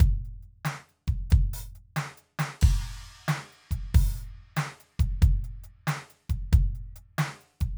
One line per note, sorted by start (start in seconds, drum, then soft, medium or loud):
0.01 closed hi-hat loud
0.01 kick loud
0.26 closed hi-hat soft
0.43 closed hi-hat soft
0.66 snare loud
0.66 closed hi-hat loud
0.90 closed hi-hat soft
1.08 kick medium
1.08 closed hi-hat medium
1.31 kick loud
1.31 closed hi-hat loud
1.54 open hi-hat loud
1.59 hi-hat pedal soft
1.76 closed hi-hat soft
1.97 snare loud
1.97 closed hi-hat loud
2.18 closed hi-hat medium
2.40 snare loud
2.40 closed hi-hat loud
2.62 kick loud
2.62 crash loud
3.29 snare loud
3.29 closed hi-hat loud
3.53 closed hi-hat soft
3.72 kick medium
3.72 closed hi-hat loud
3.95 kick loud
3.95 open hi-hat loud
4.18 hi-hat pedal soft
4.18 open hi-hat soft
4.57 closed hi-hat loud
4.57 snare loud
4.81 closed hi-hat medium
5.00 kick loud
5.00 closed hi-hat loud
5.23 kick loud
5.23 closed hi-hat loud
5.45 closed hi-hat medium
5.65 closed hi-hat medium
5.88 snare loud
5.88 closed hi-hat loud
6.11 closed hi-hat medium
6.30 kick medium
6.30 closed hi-hat medium
6.54 kick loud
6.54 closed hi-hat loud
6.76 closed hi-hat soft
6.97 closed hi-hat medium
7.19 snare loud
7.19 closed hi-hat loud
7.41 closed hi-hat soft
7.61 kick medium
7.61 closed hi-hat loud